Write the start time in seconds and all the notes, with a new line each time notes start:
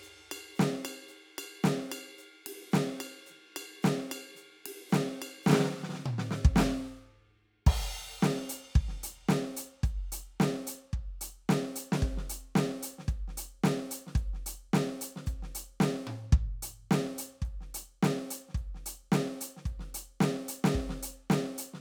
0.04 hi-hat pedal
0.32 ride bell
0.56 hi-hat pedal
0.60 snare
0.86 ride bell
1.09 hi-hat pedal
1.39 ride bell
1.65 snare, hi-hat pedal
1.92 ride bell
2.19 hi-hat pedal
2.47 ride
2.72 snare, hi-hat pedal
3.01 ride bell
3.27 snare, hi-hat pedal
3.57 ride bell
3.83 snare, hi-hat pedal
4.12 ride bell
4.35 snare, hi-hat pedal
4.38 snare
4.66 ride
4.90 snare, hi-hat pedal
5.22 ride bell
5.44 snare, hi-hat pedal
5.50 snare
5.54 snare
5.55 snare
5.60 snare
5.65 snare
5.71 snare
5.75 snare
5.77 snare
5.80 snare
5.82 snare
5.84 snare
5.90 snare
5.99 snare
6.06 high tom
6.19 snare
6.31 snare
6.45 kick
6.57 snare
6.59 snare
7.67 kick, crash
7.96 closed hi-hat
8.23 snare
8.50 closed hi-hat
8.75 kick, closed hi-hat
8.89 snare
9.04 closed hi-hat
9.29 snare
9.57 closed hi-hat
9.84 closed hi-hat, kick
10.13 closed hi-hat
10.41 snare
10.68 closed hi-hat
10.94 kick
11.22 closed hi-hat
11.50 snare
11.76 closed hi-hat
11.93 snare
12.03 kick, closed hi-hat
12.18 snare
12.30 closed hi-hat
12.56 snare
12.83 closed hi-hat
12.99 snare
13.09 kick, closed hi-hat
13.29 snare
13.38 closed hi-hat
13.64 snare
13.92 closed hi-hat
14.07 snare
14.16 kick, closed hi-hat
14.34 snare
14.47 closed hi-hat
14.74 snare
15.02 closed hi-hat
15.17 snare
15.27 closed hi-hat, kick
15.43 snare
15.56 closed hi-hat
15.81 snare
16.08 high tom
16.33 kick
16.63 closed hi-hat
16.92 snare
17.19 closed hi-hat
17.42 kick, closed hi-hat
17.61 snare
17.75 closed hi-hat
18.03 snare
18.31 closed hi-hat
18.49 snare
18.55 kick, closed hi-hat
18.75 snare
18.87 closed hi-hat
19.13 snare
19.42 closed hi-hat
19.57 snare
19.66 kick, closed hi-hat
19.80 snare
19.95 closed hi-hat
20.21 snare
20.49 closed hi-hat
20.65 snare
20.75 kick
20.90 snare
21.03 closed hi-hat
21.31 snare
21.59 closed hi-hat
21.74 snare